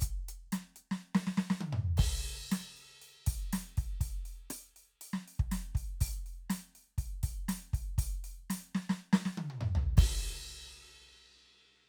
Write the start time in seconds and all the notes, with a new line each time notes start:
0.01 kick, closed hi-hat, hi-hat pedal
0.29 closed hi-hat
0.53 snare, open hi-hat
0.77 open hi-hat
0.92 snare
1.16 snare
1.28 snare
1.38 snare
1.51 snare
1.62 high tom
1.73 mid tom
1.98 kick, crash
2.52 snare, open hi-hat
2.77 open hi-hat
3.02 open hi-hat
3.27 kick, open hi-hat
3.53 snare, open hi-hat
3.78 kick, open hi-hat
4.01 kick, open hi-hat
4.26 open hi-hat
4.51 cross-stick, open hi-hat
4.77 open hi-hat
5.02 open hi-hat
5.14 snare
5.29 open hi-hat
5.40 kick
5.52 snare, open hi-hat
5.76 kick, open hi-hat
6.01 open hi-hat, kick
6.27 open hi-hat
6.51 snare, open hi-hat
6.76 open hi-hat
6.99 kick, open hi-hat
7.24 kick, open hi-hat
7.49 snare, open hi-hat
7.74 kick, open hi-hat
7.99 kick, open hi-hat
8.25 open hi-hat
8.51 snare, open hi-hat
8.76 snare
8.90 snare
9.14 snare
9.26 snare
9.38 high tom
9.51 high tom
9.62 mid tom
9.76 floor tom
9.98 kick, ride, crash